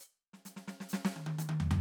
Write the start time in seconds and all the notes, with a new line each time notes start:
0.00 hi-hat pedal
0.33 snare
0.45 snare, hi-hat pedal
0.56 snare
0.68 snare
0.80 snare
0.89 hi-hat pedal
0.93 snare
1.05 snare
1.16 closed hi-hat, high tom
1.26 high tom
1.39 hi-hat pedal, high tom
1.49 high tom
1.60 floor tom
1.71 floor tom